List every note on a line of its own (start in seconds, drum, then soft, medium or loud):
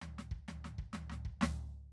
0.01 snare soft
0.01 floor tom medium
0.18 snare soft
0.18 floor tom soft
0.31 kick soft
0.48 snare soft
0.48 floor tom medium
0.64 snare soft
0.64 floor tom soft
0.78 kick soft
0.93 snare soft
0.93 floor tom medium
1.10 snare soft
1.10 floor tom soft
1.25 kick soft
1.41 snare medium
1.41 floor tom medium